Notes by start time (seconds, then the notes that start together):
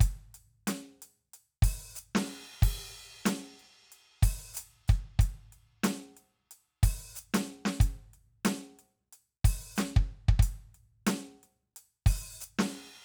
0.01 kick, closed hi-hat
0.35 closed hi-hat
0.68 snare, closed hi-hat
1.02 closed hi-hat
1.34 closed hi-hat
1.63 kick, open hi-hat
1.96 hi-hat pedal
2.15 snare, crash
2.63 kick, crash
3.26 snare, closed hi-hat
3.60 closed hi-hat
3.92 closed hi-hat
4.23 kick, open hi-hat
4.54 closed hi-hat, hi-hat pedal
4.59 cross-stick
4.88 closed hi-hat, kick
5.20 kick, closed hi-hat
5.53 closed hi-hat
5.84 snare, closed hi-hat
6.17 closed hi-hat
6.51 closed hi-hat
6.83 kick, open hi-hat
7.16 hi-hat pedal
7.34 snare, closed hi-hat
7.66 snare
7.81 kick, closed hi-hat
8.14 closed hi-hat
8.45 snare, closed hi-hat
8.79 closed hi-hat
9.13 closed hi-hat
9.45 kick, open hi-hat
9.76 snare, closed hi-hat, hi-hat pedal
9.97 kick
10.29 kick
10.40 kick, closed hi-hat
10.75 closed hi-hat
11.07 snare, closed hi-hat
11.44 closed hi-hat
11.77 closed hi-hat
12.07 open hi-hat, kick
12.41 hi-hat pedal
12.59 snare, crash